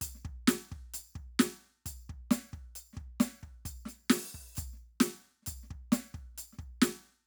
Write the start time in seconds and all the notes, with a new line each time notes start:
0.01 kick, percussion
0.14 snare
0.25 kick
0.47 snare, percussion
0.71 kick
0.94 percussion
1.14 kick, percussion
1.39 snare, percussion
1.86 kick, percussion
2.09 kick
2.31 snare, percussion
2.52 kick, percussion
2.75 percussion
2.93 kick, snare
2.97 percussion
3.20 snare, percussion
3.41 kick, percussion
3.65 kick, percussion
3.85 snare, percussion
4.10 snare, percussion
4.34 kick
4.55 percussion
4.57 kick, percussion
4.73 snare
4.77 percussion
5.00 snare, percussion
5.22 percussion
5.42 snare, percussion
5.47 kick
5.63 snare
5.67 kick, percussion
5.92 snare, percussion
6.14 kick, percussion
6.34 snare, percussion
6.52 snare
6.59 kick, percussion
6.82 snare, percussion